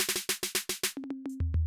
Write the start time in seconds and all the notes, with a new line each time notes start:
0.03 snare, hi-hat pedal
0.09 snare
0.16 snare
0.29 snare
0.41 snare, hi-hat pedal
0.55 snare
0.69 snare
0.83 snare, hi-hat pedal
0.97 high tom
1.04 high tom
1.10 high tom
1.26 hi-hat pedal, high tom
1.40 floor tom
1.54 floor tom